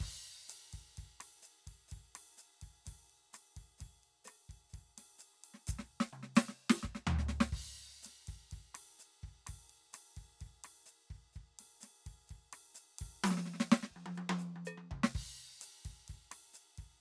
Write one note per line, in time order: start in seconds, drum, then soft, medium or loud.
0.01 kick soft
0.01 crash medium
0.07 kick soft
0.49 hi-hat pedal medium
0.49 ride medium
0.74 kick soft
0.74 ride medium
0.94 hi-hat pedal soft
0.98 kick soft
0.98 ride soft
1.04 kick soft
1.20 cross-stick soft
1.20 snare soft
1.20 ride medium
1.43 hi-hat pedal medium
1.43 ride soft
1.67 kick soft
1.67 ride soft
1.89 kick soft
1.89 hi-hat pedal medium
1.89 ride soft
1.98 kick soft
2.16 cross-stick soft
2.16 ride medium
2.38 hi-hat pedal medium
2.38 ride soft
2.62 kick soft
2.62 ride soft
2.86 kick soft
2.86 snare soft
2.86 hi-hat pedal soft
2.86 ride medium
2.93 kick soft
3.10 ride soft
3.34 cross-stick soft
3.34 snare soft
3.34 hi-hat pedal medium
3.34 ride medium
3.57 kick soft
3.57 ride soft
3.79 kick soft
3.79 snare soft
3.79 hi-hat pedal soft
3.79 ride soft
3.87 kick soft
4.04 ride soft
4.25 cross-stick soft
4.25 snare soft
4.25 hi-hat pedal medium
4.25 ride medium
4.25 percussion soft
4.50 kick soft
4.50 ride soft
4.70 hi-hat pedal soft
4.74 kick soft
4.74 ride soft
4.79 kick soft
4.98 snare soft
4.98 ride medium
5.19 hi-hat pedal medium
5.19 ride soft
5.34 cross-stick soft
5.44 ride medium
5.55 snare soft
5.68 kick soft
5.68 hi-hat pedal loud
5.68 ride medium
5.76 kick soft
5.76 snare soft
6.01 snare medium
6.13 mid tom soft
6.23 snare soft
6.36 snare loud
6.36 hi-hat pedal loud
6.49 snare soft
6.70 snare loud
6.83 kick soft
6.83 snare soft
6.90 kick soft
6.95 snare soft
7.07 floor tom loud
7.19 snare soft
7.29 snare medium
7.41 snare loud
7.53 kick soft
7.53 crash medium
8.03 snare soft
8.03 hi-hat pedal medium
8.03 ride medium
8.28 kick soft
8.28 ride medium
8.34 kick soft
8.51 kick soft
8.51 hi-hat pedal soft
8.51 ride soft
8.58 kick soft
8.75 cross-stick soft
8.75 snare soft
8.75 ride medium
9.00 hi-hat pedal medium
9.24 kick soft
9.29 kick soft
9.47 kick soft
9.47 cross-stick soft
9.47 snare soft
9.47 hi-hat pedal soft
9.47 ride medium
9.54 kick soft
9.70 ride soft
9.94 cross-stick soft
9.94 hi-hat pedal medium
9.94 ride medium
10.17 kick soft
10.17 ride soft
10.39 kick soft
10.39 hi-hat pedal soft
10.39 ride soft
10.47 kick soft
10.64 cross-stick soft
10.64 ride medium
10.86 hi-hat pedal medium
11.11 kick soft
11.11 ride soft
11.16 kick soft
11.33 kick soft
11.33 hi-hat pedal soft
11.59 snare soft
11.59 ride medium
11.81 snare soft
11.81 hi-hat pedal medium
11.81 ride medium
12.07 kick soft
12.07 ride soft
12.28 kick soft
12.28 hi-hat pedal soft
12.28 ride soft
12.53 cross-stick soft
12.53 snare soft
12.53 ride medium
12.75 hi-hat pedal medium
12.75 ride medium
12.99 kick soft
12.99 ride medium
13.24 hi-hat pedal loud
13.24 high tom loud
13.31 snare medium
13.38 snare soft
13.46 snare soft
13.54 snare soft
13.61 snare medium
13.72 snare loud
13.83 snare soft
13.91 kick soft
13.97 high tom soft
14.06 high tom medium
14.15 hi-hat pedal soft
14.15 high tom medium
14.30 high tom loud
14.39 hi-hat pedal medium
14.56 high tom soft
14.66 hi-hat pedal medium
14.66 percussion medium
14.78 high tom soft
14.91 kick soft
14.91 mid tom medium
14.97 kick soft
15.04 snare medium
15.15 kick soft
15.15 crash medium
15.22 kick soft
15.61 hi-hat pedal medium
15.61 ride medium
15.86 kick soft
15.86 snare soft
15.86 ride medium
16.07 kick soft
16.07 hi-hat pedal soft
16.07 ride soft
16.15 kick soft
16.15 snare soft
16.31 cross-stick soft
16.31 snare soft
16.31 ride medium
16.54 hi-hat pedal medium
16.54 ride soft
16.78 kick soft
16.78 ride soft